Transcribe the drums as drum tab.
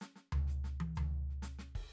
RD |-----------x|
HH |p--p-xp--p--|
SD |gg-gg---ggg-|
T1 |-----o------|
FT |--o---o-----|
BD |-----------g|